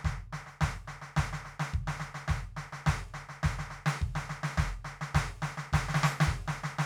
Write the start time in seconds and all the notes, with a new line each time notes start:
0.05 kick, snare
0.33 snare
0.47 snare
0.61 kick, snare
0.88 snare
1.02 snare
1.17 kick, snare
1.33 snare
1.45 snare
1.60 snare
1.74 kick
1.88 snare
2.00 snare
2.15 snare
2.28 kick, snare
2.57 snare
2.73 snare
2.87 kick, snare
3.14 snare
3.29 snare
3.43 kick, snare
3.59 snare
3.71 snare
3.86 snare
4.02 kick
4.16 snare
4.30 snare
4.44 snare
4.58 kick, snare
4.85 snare
5.01 snare
5.15 kick, snare
5.43 snare
5.58 snare
5.73 kick, snare, open hi-hat
5.89 snare
5.95 snare
6.04 snare
6.21 snare
6.27 kick
6.48 snare
6.64 snare
6.79 snare